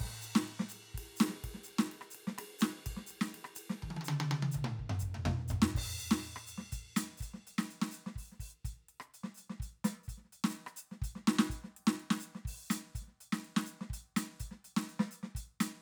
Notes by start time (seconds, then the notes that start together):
0.01 kick, crash
0.06 kick, snare
0.10 snare
0.22 hi-hat pedal, ride bell
0.36 snare
0.49 ride
0.60 snare
0.70 hi-hat pedal, ride
0.95 kick, ride
1.17 snare, hi-hat pedal
1.21 ride
1.30 snare
1.45 kick, ride
1.55 snare
1.64 hi-hat pedal
1.69 ride
1.79 snare
1.93 ride
2.02 cross-stick
2.11 hi-hat pedal
2.16 ride
2.28 snare
2.39 cross-stick, ride
2.60 snare, hi-hat pedal, ride
2.87 kick, ride bell
2.93 kick
2.98 snare
3.07 hi-hat pedal
3.12 ride
3.22 snare
3.35 ride
3.45 cross-stick
3.56 hi-hat pedal, ride
3.71 snare
3.83 kick, high tom
3.91 high tom
3.98 high tom
4.02 hi-hat pedal, high tom
4.09 high tom
4.14 high tom
4.21 high tom
4.32 high tom
4.44 high tom
4.52 hi-hat pedal, mid tom
4.57 kick
4.65 mid tom
4.80 kick
4.91 floor tom
5.00 kick, hi-hat pedal
5.15 floor tom
5.26 kick, floor tom
5.40 snare
5.49 kick, floor tom, hi-hat pedal
5.56 kick
5.63 snare
5.76 kick, crash
5.83 kick, cross-stick
5.99 closed hi-hat, hi-hat pedal
6.12 snare
6.25 closed hi-hat
6.37 cross-stick
6.48 closed hi-hat, hi-hat pedal
6.59 snare
6.73 closed hi-hat, kick
6.97 closed hi-hat, snare
7.18 kick, hi-hat pedal
7.23 closed hi-hat
7.35 snare
7.48 closed hi-hat
7.59 snare
7.71 closed hi-hat
7.83 snare
7.92 closed hi-hat, hi-hat pedal
8.07 snare
8.17 open hi-hat, kick
8.33 snare
8.41 open hi-hat, kick
8.66 closed hi-hat, kick
8.74 kick
8.89 closed hi-hat
9.01 cross-stick
9.15 closed hi-hat
9.25 snare
9.35 closed hi-hat, hi-hat pedal
9.51 snare
9.61 closed hi-hat, kick
9.85 closed hi-hat, snare
10.04 hi-hat pedal
10.09 closed hi-hat, kick
10.18 snare
10.25 snare
10.33 closed hi-hat
10.45 snare
10.51 hi-hat pedal
10.56 closed hi-hat
10.67 cross-stick
10.77 closed hi-hat, hi-hat pedal
10.92 snare
11.03 closed hi-hat, kick
11.09 kick
11.16 snare
11.28 snare
11.40 snare
11.51 closed hi-hat, kick
11.56 kick
11.65 snare
11.78 closed hi-hat
11.88 snare
12.01 closed hi-hat
12.11 snare
12.21 closed hi-hat, hi-hat pedal
12.36 snare
12.46 open hi-hat, kick
12.54 kick
12.69 closed hi-hat, snare, hi-hat pedal
12.96 closed hi-hat, kick
13.02 snare
13.08 snare
13.14 snare
13.21 closed hi-hat
13.33 snare
13.46 closed hi-hat
13.57 snare
13.67 closed hi-hat, hi-hat pedal
13.82 snare
13.91 closed hi-hat, kick
14.17 closed hi-hat, snare
14.41 closed hi-hat, kick
14.52 snare
14.65 closed hi-hat
14.78 snare
14.90 closed hi-hat
15.00 snare
15.12 closed hi-hat, hi-hat pedal
15.24 snare
15.36 closed hi-hat, kick
15.61 closed hi-hat, snare